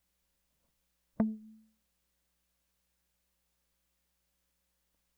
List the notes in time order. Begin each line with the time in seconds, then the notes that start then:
1.20 A3